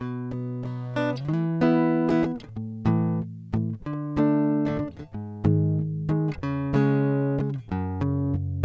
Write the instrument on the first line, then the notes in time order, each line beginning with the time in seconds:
acoustic guitar
0.01 B2 B3
0.32 B2 F#3 B3
0.64 B2 F#3 B3
0.97 B3 D4
1.31 E3 A3
1.62 B3 E4
2.10 E3 B3 E4
2.24 E3 B3 E4
2.57 A2
2.86 A2 E3
3.23 A2 E3
3.54 A2 E3
3.87 D3
4.18 D3 A3 D4
4.66 D3 A3 D4
4.78 A3
5.15 G#2
5.45 G#2 D#3 G#3
5.80 G#2
6.10 D#3 G#3
6.44 C#3
6.74 C#3 G#3 C#4
7.39 C#3 G#3 C#4
7.72 F#2
8.02 C#3
8.35 F#2 C#3